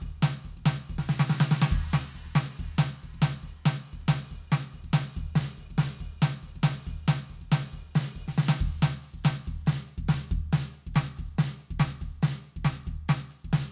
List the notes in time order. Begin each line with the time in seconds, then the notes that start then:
0.01 kick, snare, percussion
0.23 snare, percussion
0.44 kick, snare, percussion
0.57 kick
0.66 snare, percussion
0.88 kick, percussion
0.98 snare
1.09 snare
1.20 snare
1.30 snare
1.40 snare
1.51 snare
1.62 snare
1.72 kick, crash
1.93 snare, percussion
2.16 kick, snare, percussion
2.26 kick
2.35 snare, percussion
2.56 kick, snare, percussion
2.78 snare, percussion
3.00 kick, snare, percussion
3.14 kick
3.22 snare, percussion
3.43 kick, snare, percussion
3.66 snare, percussion
3.88 snare, percussion
3.93 kick
4.01 kick
4.08 snare, percussion
4.31 kick, percussion
4.52 snare, percussion
4.74 kick, percussion
4.84 kick
4.93 snare, percussion
5.15 kick, snare, percussion
5.36 snare, percussion
5.57 kick, snare, percussion
5.71 kick
5.78 snare, percussion
5.98 kick, snare, percussion
6.22 snare, percussion
6.43 kick, percussion
6.56 kick
6.63 snare, percussion
6.85 kick, snare, percussion
7.08 snare, percussion
7.30 kick, snare, percussion
7.41 kick
7.52 snare, percussion
7.72 kick, snare, percussion
7.95 snare, percussion
8.10 snare
8.16 kick, percussion
8.28 snare
8.34 percussion
8.38 snare
8.49 snare
8.56 snare
8.61 kick
8.66 crash
8.82 snare, percussion
9.04 percussion
9.14 kick
9.24 snare, percussion
9.45 kick, snare, percussion
9.67 snare, percussion
9.86 snare, percussion
9.98 kick
10.08 snare, percussion
10.29 kick, snare, percussion
10.53 snare, percussion
10.67 snare
10.74 percussion
10.87 kick
10.95 snare, percussion
11.17 kick, snare, percussion
11.39 snare, percussion
11.58 snare, percussion
11.71 kick
11.79 snare, percussion
11.99 kick, snare, percussion
12.23 snare, percussion
12.41 snare, percussion
12.56 kick
12.65 snare, percussion
12.84 kick, snare, percussion
13.09 snare, percussion
13.31 percussion
13.45 kick
13.53 snare, percussion